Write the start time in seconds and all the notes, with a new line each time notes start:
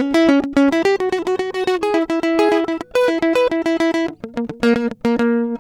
0.00 C#4
0.15 E4
0.30 C#4
0.45 C#4
0.58 C#4
0.74 E4
0.87 G4
1.02 F#4
1.14 F4
1.28 F#4
1.41 F#4
1.56 F#4
1.69 F#4
1.79 E4
1.84 G#4
1.95 E4
2.11 E4
2.25 E4
2.40 G#4
2.53 E4
2.70 E4
2.82 F4
2.97 B4
3.10 E4
3.24 E4
3.35 E4 B4
3.53 E4
3.67 E4
3.82 E4
3.96 E4
4.07 E4
4.64 A#3
4.78 A#3
5.06 A#3
5.21 A#3